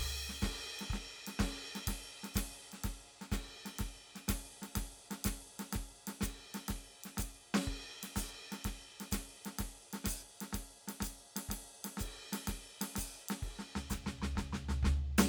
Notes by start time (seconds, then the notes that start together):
0.29 snare
0.42 kick, snare, ride
0.79 snare, ride
0.90 kick, snare, ride
1.27 snare, ride
1.39 kick, snare, ride
1.75 snare, ride
1.87 kick, snare, ride
2.23 snare, ride
2.34 kick, snare, hi-hat pedal, ride
2.72 snare, ride
2.84 kick, snare, ride
3.21 snare, ride
3.31 kick, snare, hi-hat pedal, ride
3.65 snare, ride
3.79 kick, snare, ride
4.15 snare, ride
4.28 kick, snare, hi-hat pedal, ride
4.62 snare, ride
4.75 kick, snare, ride
5.11 snare, ride
5.24 kick, snare, hi-hat pedal, ride
5.59 snare, ride
5.73 kick, snare, ride
6.07 snare, ride
6.21 kick, snare, hi-hat pedal, ride
6.54 snare, ride
6.68 kick, snare, ride
7.04 snare, ride
7.17 kick, snare, hi-hat pedal, ride
7.54 snare, ride
7.67 kick, hi-hat pedal
8.03 snare, ride
8.16 kick, snare, hi-hat pedal, ride
8.52 snare, ride
8.63 kick, snare, hi-hat pedal, ride
9.00 snare, ride
9.11 kick, snare, hi-hat pedal, ride
9.45 snare, ride
9.58 kick, snare, ride
9.93 snare, ride
10.04 kick, snare, hi-hat pedal, ride
10.40 snare, ride
10.53 kick, snare, ride
10.88 snare, ride
11.00 kick, snare, hi-hat pedal, ride
11.36 snare, ride
11.49 kick, snare, ride
11.84 snare, ride
11.97 kick, snare, hi-hat pedal, ride
12.32 snare, ride
12.47 kick, snare, ride
12.81 snare, ride
12.95 kick, snare, hi-hat pedal, ride
13.28 snare, ride
13.42 kick, ride
13.59 snare
13.75 snare, floor tom
13.90 kick, snare, floor tom, hi-hat pedal
14.06 snare, floor tom
14.22 snare, floor tom
14.35 kick, snare, floor tom, hi-hat pedal
14.53 snare, floor tom
14.69 snare, floor tom
14.83 kick, snare, floor tom
15.18 open hi-hat, snare